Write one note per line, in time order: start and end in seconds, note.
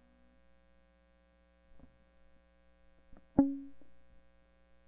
3.40 3.46 C#4